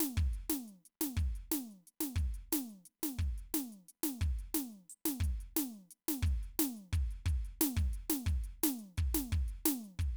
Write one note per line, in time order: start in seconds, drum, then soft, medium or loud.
0.01 snare medium
0.01 closed hi-hat soft
0.18 kick medium
0.18 closed hi-hat soft
0.34 closed hi-hat soft
0.50 snare medium
0.50 closed hi-hat soft
0.68 closed hi-hat soft
0.86 closed hi-hat soft
1.02 snare medium
1.02 closed hi-hat soft
1.17 kick medium
1.17 closed hi-hat soft
1.36 closed hi-hat soft
1.52 snare medium
1.52 closed hi-hat soft
1.72 closed hi-hat soft
1.88 closed hi-hat soft
2.01 snare medium
2.01 closed hi-hat soft
2.16 kick medium
2.16 closed hi-hat soft
2.35 closed hi-hat soft
2.53 snare medium
2.53 closed hi-hat soft
2.70 closed hi-hat soft
2.86 closed hi-hat medium
3.04 snare medium
3.04 closed hi-hat soft
3.19 kick soft
3.19 closed hi-hat soft
3.38 closed hi-hat soft
3.55 snare medium
3.55 closed hi-hat soft
3.73 closed hi-hat soft
3.89 closed hi-hat medium
4.04 snare medium
4.04 closed hi-hat medium
4.22 kick medium
4.22 closed hi-hat soft
4.39 closed hi-hat soft
4.55 snare medium
4.55 closed hi-hat medium
4.72 closed hi-hat soft
4.90 closed hi-hat medium
5.06 snare medium
5.06 closed hi-hat soft
5.21 kick medium
5.21 closed hi-hat medium
5.41 closed hi-hat soft
5.57 closed hi-hat medium
5.57 snare medium
5.74 closed hi-hat soft
5.91 closed hi-hat medium
6.09 snare medium
6.09 closed hi-hat soft
6.23 kick medium
6.23 closed hi-hat soft
6.44 closed hi-hat soft
6.60 closed hi-hat medium
6.60 snare medium
6.77 closed hi-hat soft
6.93 kick medium
6.93 closed hi-hat soft
7.11 closed hi-hat soft
7.26 kick medium
7.26 closed hi-hat soft
7.45 closed hi-hat soft
7.62 snare medium
7.62 closed hi-hat soft
7.77 kick medium
7.77 closed hi-hat soft
7.94 closed hi-hat soft
8.10 snare medium
8.10 closed hi-hat soft
8.27 kick medium
8.27 closed hi-hat soft
8.44 closed hi-hat soft
8.64 snare medium
8.64 closed hi-hat soft
8.80 closed hi-hat soft
8.98 kick medium
8.98 closed hi-hat soft
9.15 snare medium
9.15 closed hi-hat soft
9.33 kick medium
9.33 closed hi-hat soft
9.49 closed hi-hat soft
9.66 closed hi-hat medium
9.66 snare medium
9.85 closed hi-hat soft
10.00 kick soft
10.00 closed hi-hat soft